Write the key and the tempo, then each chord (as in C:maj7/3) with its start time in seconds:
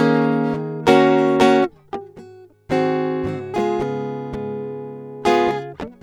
A# minor, 110 BPM
0.00 D#:sus4(b7)
1.66 G#:7
3.85 C#:7